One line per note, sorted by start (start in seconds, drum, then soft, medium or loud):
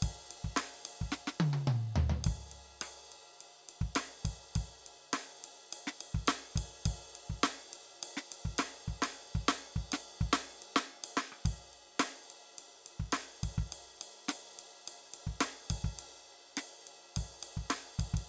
0.03 kick medium
0.03 ride loud
0.31 ride medium
0.45 kick soft
0.57 snare loud
0.57 ride loud
0.85 ride loud
1.01 kick medium
1.12 snare loud
1.28 snare loud
1.40 open hi-hat soft
1.40 high tom loud
1.53 high tom medium
1.67 mid tom loud
1.96 floor tom loud
2.10 floor tom loud
2.24 kick medium
2.24 ride loud
2.52 ride medium
2.81 cross-stick medium
2.81 ride loud
3.12 ride medium
3.41 ride medium
3.69 ride medium
3.81 kick medium
3.95 snare loud
3.95 ride loud
4.25 kick medium
4.25 ride loud
4.56 kick medium
4.56 ride loud
4.87 ride medium
5.13 snare medium
5.13 ride loud
5.44 ride medium
5.73 ride loud
5.87 snare medium
6.01 ride medium
6.15 kick medium
6.28 snare loud
6.28 ride loud
6.56 kick medium
6.56 ride loud
6.86 kick medium
6.86 ride loud
7.15 ride medium
7.30 kick soft
7.43 snare loud
7.43 ride loud
7.73 ride medium
8.03 ride loud
8.17 snare medium
8.32 ride medium
8.45 kick medium
8.58 snare loud
8.58 ride loud
8.88 kick soft
9.02 snare loud
9.02 ride loud
9.35 kick medium
9.48 snare loud
9.48 ride loud
9.76 kick medium
9.92 snare loud
9.92 ride loud
10.21 kick medium
10.33 snare loud
10.33 ride loud
10.62 ride medium
10.76 snare loud
11.04 ride loud
11.17 snare loud
11.32 cross-stick medium
11.45 kick medium
11.45 ride loud
11.73 ride soft
12.00 snare loud
12.00 ride loud
12.30 ride medium
12.59 ride medium
12.86 ride medium
13.00 kick soft
13.13 snare loud
13.13 ride loud
13.43 kick medium
13.43 ride loud
13.58 kick medium
13.73 ride loud
14.01 ride loud
14.29 snare loud
14.29 ride loud
14.59 ride medium
14.88 ride loud
15.14 ride medium
15.27 kick soft
15.41 snare loud
15.41 ride loud
15.70 kick medium
15.70 ride loud
15.84 kick medium
15.99 ride medium
16.57 snare medium
16.57 ride loud
16.87 ride medium
17.16 kick medium
17.16 ride loud
17.43 ride loud
17.57 kick soft
17.70 snare medium
17.70 ride loud
17.99 kick medium
17.99 ride loud
18.14 kick medium
18.14 ride medium